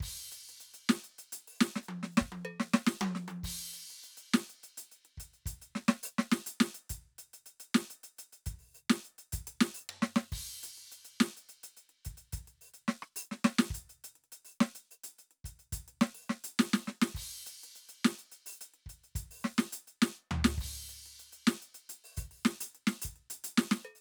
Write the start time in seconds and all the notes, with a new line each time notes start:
0.01 kick, crash
0.07 kick
0.10 kick
0.20 closed hi-hat
0.32 closed hi-hat
0.50 closed hi-hat
0.61 closed hi-hat
0.74 closed hi-hat
0.90 snare
1.04 closed hi-hat
1.19 closed hi-hat
1.33 closed hi-hat
1.48 open hi-hat
1.59 snare, hi-hat pedal
1.76 snare
1.83 hi-hat pedal
1.89 high tom
2.04 snare
2.12 hi-hat pedal
2.18 kick, snare
2.33 high tom
2.46 percussion
2.61 snare
2.74 snare
2.87 snare
3.01 hi-hat pedal, high tom
3.16 snare
3.28 hi-hat pedal, high tom
3.44 kick, crash
3.74 closed hi-hat
3.91 closed hi-hat
4.04 closed hi-hat
4.18 closed hi-hat
4.34 snare
4.50 closed hi-hat
4.64 closed hi-hat
4.78 closed hi-hat
4.92 closed hi-hat
5.06 closed hi-hat
5.18 closed hi-hat, kick
5.34 closed hi-hat
5.46 closed hi-hat, kick
5.52 kick
5.62 closed hi-hat
5.76 snare
5.89 snare
6.04 open hi-hat, hi-hat pedal
6.19 snare
6.32 snare
6.47 closed hi-hat
6.61 snare
6.75 closed hi-hat
6.90 closed hi-hat, kick
7.19 closed hi-hat
7.34 closed hi-hat
7.47 closed hi-hat
7.61 closed hi-hat
7.75 snare
7.91 closed hi-hat
8.04 closed hi-hat
8.17 closed hi-hat, hi-hat pedal
8.33 open hi-hat
8.47 closed hi-hat, kick
8.53 kick
8.57 open hi-hat, kick
8.75 open hi-hat, hi-hat pedal
8.90 snare
9.05 closed hi-hat
9.19 closed hi-hat
9.33 closed hi-hat, kick
9.40 kick
9.48 closed hi-hat
9.61 snare
9.75 open hi-hat
9.90 floor tom
10.03 snare
10.17 snare
10.33 kick, crash
10.41 kick
10.64 closed hi-hat
10.78 closed hi-hat
10.92 closed hi-hat
11.05 closed hi-hat
11.21 snare
11.37 closed hi-hat
11.50 closed hi-hat
11.64 closed hi-hat
11.77 closed hi-hat
11.90 closed hi-hat
12.06 closed hi-hat, kick
12.18 closed hi-hat
12.33 closed hi-hat, kick
12.38 closed hi-hat
12.45 hi-hat pedal, open hi-hat
12.62 open hi-hat
12.69 hi-hat pedal
12.74 closed hi-hat
12.89 snare
13.03 cross-stick
13.17 open hi-hat
13.32 snare
13.45 snare
13.59 snare
13.65 hi-hat pedal
13.71 kick
13.75 closed hi-hat, kick
13.90 closed hi-hat
14.05 closed hi-hat
14.16 closed hi-hat
14.25 closed hi-hat
14.33 closed hi-hat
14.45 open hi-hat
14.61 snare
14.76 open hi-hat
14.92 open hi-hat, hi-hat pedal
15.04 closed hi-hat
15.19 closed hi-hat
15.32 closed hi-hat
15.45 closed hi-hat, kick
15.60 closed hi-hat
15.73 closed hi-hat, kick
15.79 kick
15.89 closed hi-hat
16.02 snare
16.15 open hi-hat
16.24 hi-hat pedal
16.30 snare
16.45 closed hi-hat
16.60 snare
16.74 snare
16.88 snare
17.02 snare
17.09 hi-hat pedal
17.15 kick, crash
17.47 closed hi-hat
17.64 closed hi-hat
17.76 closed hi-hat
17.89 closed hi-hat
18.05 snare
18.19 closed hi-hat
18.32 closed hi-hat
18.47 open hi-hat
18.52 hi-hat pedal
18.61 open hi-hat
18.74 closed hi-hat
18.87 closed hi-hat, kick
19.04 closed hi-hat
19.16 closed hi-hat, kick
19.22 kick
19.32 open hi-hat
19.37 open hi-hat
19.45 snare
19.59 snare, hi-hat pedal
19.73 closed hi-hat
19.88 open hi-hat
20.03 snare
20.17 closed hi-hat
20.32 floor tom
20.45 snare
20.57 kick, hi-hat pedal
20.61 kick, crash
20.77 closed hi-hat
20.90 closed hi-hat
21.07 closed hi-hat
21.20 closed hi-hat
21.33 closed hi-hat
21.48 snare
21.62 closed hi-hat
21.75 closed hi-hat
21.90 closed hi-hat
22.05 open hi-hat
22.18 open hi-hat, kick, hi-hat pedal
22.24 kick
22.28 kick, open hi-hat
22.46 snare
22.61 closed hi-hat
22.75 closed hi-hat
22.88 snare
23.02 closed hi-hat, kick
23.16 closed hi-hat
23.31 closed hi-hat
23.45 closed hi-hat
23.58 snare
23.72 snare
23.81 snare
23.85 percussion
23.96 hi-hat pedal